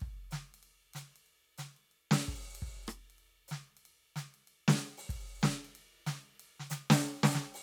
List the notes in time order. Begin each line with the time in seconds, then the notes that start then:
0.01 kick, ride
0.31 snare, hi-hat pedal
0.36 ride
0.54 ride
0.63 ride
0.94 snare, hi-hat pedal, ride
1.16 ride
1.27 ride
1.58 snare, hi-hat pedal, ride
1.77 ride
1.92 ride
2.11 open hi-hat, snare
2.29 kick
2.56 ride
2.63 kick
2.87 cross-stick, hi-hat pedal, ride
3.10 ride
3.19 ride
3.48 snare, hi-hat pedal
3.53 ride
3.77 ride
3.86 ride
4.16 snare, hi-hat pedal, ride
4.34 ride
4.48 ride
4.68 snare
4.80 ride
4.98 open hi-hat
5.10 kick, ride
5.41 snare, hi-hat pedal, ride
5.65 ride
5.76 ride
6.07 snare, hi-hat pedal, ride
6.40 ride
6.60 snare
6.71 snare, hi-hat pedal
6.91 snare
7.04 snare, hi-hat pedal
7.24 snare
7.31 hi-hat pedal
7.35 kick, snare
7.54 open hi-hat